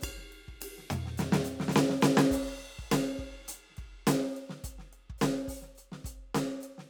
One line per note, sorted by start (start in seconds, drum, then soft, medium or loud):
0.01 kick soft
0.01 hi-hat pedal medium
0.01 ride bell loud
0.08 kick soft
0.12 kick soft
0.17 snare soft
0.32 ride soft
0.48 kick soft
0.48 snare soft
0.61 hi-hat pedal medium
0.61 ride loud
0.78 snare soft
0.90 hi-hat pedal medium
0.90 mid tom loud
1.06 snare soft
1.17 snare medium
1.17 hi-hat pedal loud
1.32 snare loud
1.44 hi-hat pedal loud
1.60 snare medium
1.68 snare medium
1.68 hi-hat pedal medium
1.76 snare loud
1.89 snare medium
2.01 snare loud
2.01 hi-hat pedal loud
2.17 snare loud
2.31 kick soft
2.31 hi-hat pedal loud
2.31 crash medium
2.37 kick soft
2.48 cross-stick soft
2.58 snare soft
2.78 kick soft
2.91 snare loud
2.91 hi-hat pedal loud
2.91 ride bell loud
3.18 kick soft
3.24 kick soft
3.40 snare soft
3.45 closed hi-hat loud
3.45 hi-hat pedal soft
3.70 snare soft
3.77 kick soft
3.77 closed hi-hat soft
4.07 closed hi-hat loud
4.07 snare loud
4.31 hi-hat pedal soft
4.36 closed hi-hat soft
4.49 snare soft
4.64 closed hi-hat medium
4.64 kick soft
4.69 kick soft
4.78 snare soft
4.93 closed hi-hat soft
5.10 kick soft
5.18 closed hi-hat medium
5.18 snare loud
5.18 hi-hat pedal soft
5.34 snare soft
5.48 open hi-hat medium
5.48 kick soft
5.62 snare soft
5.75 closed hi-hat medium
5.75 hi-hat pedal soft
5.92 snare soft
6.04 closed hi-hat medium
6.04 kick soft
6.10 kick soft
6.35 closed hi-hat medium
6.35 snare medium
6.60 closed hi-hat medium
6.60 hi-hat pedal soft
6.78 snare soft